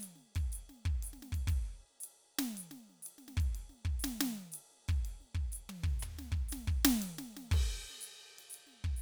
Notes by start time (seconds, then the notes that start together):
0.01 hi-hat pedal, ride
0.16 snare
0.36 kick, ride
0.53 hi-hat pedal, ride
0.70 snare
0.86 kick
1.03 hi-hat pedal, ride
1.14 snare
1.23 snare
1.33 kick, ride
1.48 kick, ride
1.90 snare
2.01 hi-hat pedal, ride
2.39 snare, ride
2.58 hi-hat pedal, ride
2.72 snare
2.90 snare
3.03 hi-hat pedal, ride
3.19 snare
3.29 snare
3.38 kick, ride
3.56 ride
3.70 snare
3.86 kick
4.00 hi-hat pedal
4.05 snare, ride
4.21 snare
4.53 hi-hat pedal, ride
4.72 snare
4.89 kick, ride
5.06 ride
5.21 snare
5.35 kick
5.53 hi-hat pedal, ride
5.70 high tom
5.84 kick
6.00 floor tom, hi-hat pedal
6.19 snare
6.33 kick
6.49 hi-hat pedal, ride
6.53 snare
6.68 kick
6.86 snare, ride
7.03 ride
7.19 snare
7.37 snare
7.52 kick, crash
7.91 snare
8.01 hi-hat pedal, ride
8.39 ride
8.51 hi-hat pedal
8.55 ride
8.68 snare
8.85 kick
8.97 hi-hat pedal